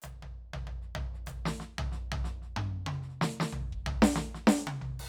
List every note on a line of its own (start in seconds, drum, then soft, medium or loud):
0.02 hi-hat pedal medium
0.02 floor tom medium
0.22 floor tom medium
0.53 floor tom loud
0.67 floor tom medium
0.82 snare soft
0.95 floor tom loud
1.14 snare soft
1.26 hi-hat pedal medium
1.26 floor tom medium
1.45 snare loud
1.60 snare medium
1.78 floor tom loud
1.92 snare soft
2.12 floor tom loud
2.24 snare medium
2.42 snare soft
2.56 mid tom loud
2.86 high tom loud
3.02 snare soft
3.09 snare soft
3.21 snare loud
3.40 snare loud
3.52 floor tom loud
3.72 kick soft
3.86 floor tom loud
4.02 snare loud
4.16 snare loud
4.34 snare soft
4.47 snare loud
4.67 high tom loud
4.81 floor tom medium
4.99 crash medium